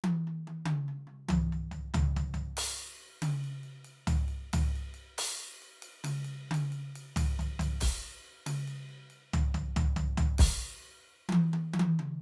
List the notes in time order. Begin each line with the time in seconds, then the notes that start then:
0.04 high tom
0.27 high tom
0.47 high tom
0.65 mid tom
0.88 mid tom
1.07 mid tom
1.29 floor tom, high tom
1.52 floor tom
1.71 floor tom
1.94 floor tom, mid tom
2.16 floor tom
2.34 floor tom
2.57 ride, crash
2.79 ride
3.22 mid tom, ride
3.44 ride
3.63 ride
3.85 ride
4.07 floor tom, ride
4.28 ride
4.53 floor tom, ride
4.76 ride
4.94 ride
5.18 ride, crash
5.43 ride
5.62 ride
5.82 ride
6.04 mid tom, ride
6.24 ride
6.51 mid tom, ride
6.72 ride
6.96 ride
7.16 floor tom, ride
7.39 floor tom, ride
7.59 floor tom, ride
7.80 kick, ride, crash
8.24 ride
8.46 mid tom, ride
8.68 ride
8.89 ride
9.10 ride
9.33 floor tom
9.54 floor tom
9.76 floor tom
9.96 floor tom
10.17 floor tom
10.38 kick, ride, crash
11.29 high tom
11.32 high tom
11.53 high tom
11.74 high tom
11.79 high tom
11.99 mid tom